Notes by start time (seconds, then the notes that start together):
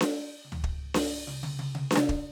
0.01 snare, crash
0.45 high tom
0.52 floor tom
0.64 kick
0.94 snare, crash
1.27 high tom
1.43 high tom
1.59 high tom
1.75 high tom
1.91 snare
1.96 snare
2.09 kick